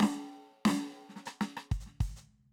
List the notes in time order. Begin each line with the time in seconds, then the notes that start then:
0.00 snare
0.02 snare
0.65 snare
0.68 snare
1.09 snare
1.16 snare
1.26 cross-stick, hi-hat pedal
1.41 snare
1.57 cross-stick
1.71 open hi-hat, kick
1.80 hi-hat pedal
1.86 snare
2.00 kick, open hi-hat
2.16 hi-hat pedal